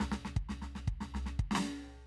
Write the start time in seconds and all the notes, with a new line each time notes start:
0.00 snare, floor tom
0.12 snare, floor tom
0.25 snare, floor tom
0.36 kick
0.49 snare, floor tom
0.62 snare, floor tom
0.75 snare, floor tom
0.87 kick
1.00 snare, floor tom
1.14 snare, floor tom
1.26 snare, floor tom
1.39 kick
1.51 snare
1.55 snare